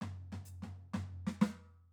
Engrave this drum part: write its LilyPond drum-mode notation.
\new DrumStaff \drummode { \time 4/4 \tempo 4 = 125 \tuplet 3/2 { <sn tomfh>8 r8 <sn tomfh>8 hhp8 <sn tomfh>8 r8 <sn tomfh>8 r8 sn8 } sn4 | }